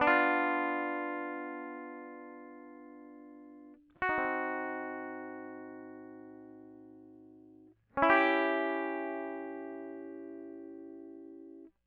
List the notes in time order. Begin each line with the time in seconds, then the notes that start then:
0.00 B3 D4
0.08 F4
4.03 F#4
4.10 D#4
4.19 C4
7.98 C#4
8.03 E4
8.11 G4